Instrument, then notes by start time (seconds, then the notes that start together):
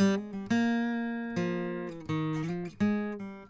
acoustic guitar
0.01 G3
0.17 G#3
0.36 G3
0.52 A#3
1.38 F3
2.11 D#3
2.47 F3
2.82 G#3
3.14 G3